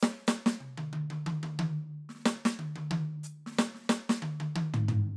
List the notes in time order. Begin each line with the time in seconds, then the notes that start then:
0.00 snare, hi-hat pedal
0.12 snare
0.18 snare
0.22 snare
0.25 snare, hi-hat pedal
0.28 snare
0.46 snare
0.60 mid tom
0.78 high tom
0.93 high tom
1.10 high tom
1.26 high tom
1.43 high tom
1.59 high tom
2.09 snare
2.15 snare
2.19 snare
2.23 snare
2.26 snare
2.45 snare
2.59 high tom
2.76 high tom
2.91 high tom
3.23 hi-hat pedal
3.46 snare
3.51 snare
3.55 snare
3.58 snare
3.75 snare
3.78 snare
3.81 snare
3.84 snare
3.89 snare
4.09 snare
4.22 high tom
4.40 high tom
4.56 high tom
4.74 floor tom
4.88 floor tom